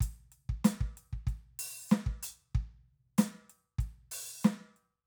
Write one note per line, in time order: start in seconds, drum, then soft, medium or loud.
0.01 kick medium
0.01 closed hi-hat medium
0.32 closed hi-hat soft
0.50 kick medium
0.65 closed hi-hat loud
0.65 snare loud
0.81 kick medium
0.98 closed hi-hat soft
1.13 kick soft
1.27 kick medium
1.27 closed hi-hat soft
1.60 open hi-hat loud
1.90 snare loud
1.90 closed hi-hat soft
1.90 hi-hat pedal medium
2.07 kick medium
2.23 closed hi-hat loud
2.55 kick medium
3.18 closed hi-hat loud
3.18 snare loud
3.50 closed hi-hat soft
3.79 kick medium
3.79 closed hi-hat soft
4.12 open hi-hat loud
4.43 closed hi-hat soft
4.43 snare loud
4.43 hi-hat pedal medium
4.77 closed hi-hat soft